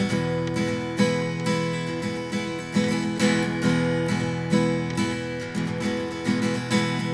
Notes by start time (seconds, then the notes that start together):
0.00 E2 B2
0.11 E2 B2 E3 B3 E4
0.57 E3 G#3 B3 E4
0.70 E3
0.99 E3 G#3 B3 E4
1.17 E4
1.47 E3 G#3 B3 E4
1.74 E4
1.90 E3
2.01 G#3 B3 E4
2.06 E3
2.16 E3 G#3 B3
2.33 E3 G#3 B3 E4
2.47 E3 B3
2.60 B3 E4
2.75 B2 E3 G#3 B3 E4
2.87 G#3 B3 E4
2.95 E3
3.05 G#3 B3 E4
3.21 E2 B2 E3 G#3 B3 E4
3.34 B2 E3
3.40 B3 E4
3.64 E2 B2 E3 G#3 B3 E4
4.10 B2 E3 G#3 B3 E4
4.21 B2 E3
4.52 E3 G#3 B3 E4
4.96 E3 G#3 B3 E4
5.11 E3 G#3 B3 E4
5.26 E4
5.42 E2 E3
5.56 E2 B2 E3 G#3
5.69 B2 E3
5.82 B2 E3 G#3 B3 E4
5.87 E2
5.97 E3 G#3 B3
6.12 E3 G#3 B3 E4
6.26 E2 B2 E3 G#3 B3 E4
6.43 E2 B2 E3 G#3 B3 E4
6.55 B2 E3 G#3 B3 E4
6.72 E2 B2 E3 G#3 B3 E4
6.86 G#3
6.99 G#3 B3 E4